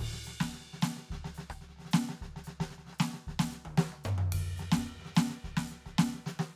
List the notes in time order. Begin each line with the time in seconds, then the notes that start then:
0.01 kick, crash
0.10 kick
0.14 kick, snare
0.25 snare, hi-hat pedal
0.42 kick, snare
0.54 snare
0.61 snare
0.67 snare
0.74 snare
0.81 snare, hi-hat pedal
0.84 snare
0.98 snare
1.12 kick, snare
1.18 kick
1.26 snare
1.36 snare, hi-hat pedal
1.51 kick, cross-stick
1.57 kick
1.62 snare
1.70 snare
1.77 snare
1.80 snare
1.86 snare
1.92 snare, hi-hat pedal
2.10 snare
2.23 kick, snare
2.29 kick
2.37 snare
2.45 snare, hi-hat pedal
2.61 kick, snare
2.66 kick
2.79 snare
2.86 snare
2.88 snare
2.94 cross-stick
3.00 snare, hi-hat pedal
3.15 snare
3.28 kick, snare
3.35 kick
3.40 snare
3.51 snare, hi-hat pedal
3.66 kick, high tom
3.79 snare
3.93 high tom
4.05 floor tom, hi-hat pedal
4.19 high tom
4.34 kick, ride
4.42 kick
4.46 kick
4.59 snare, hi-hat pedal
4.73 snare
4.78 kick, snare
4.87 snare
4.93 snare
4.97 snare
4.99 snare
5.06 snare
5.12 snare, hi-hat pedal
5.18 snare
5.31 snare
5.45 kick, snare
5.52 kick
5.58 snare
5.69 snare, hi-hat pedal
5.87 kick, snare
6.00 snare
6.15 snare
6.27 snare, hi-hat pedal
6.40 snare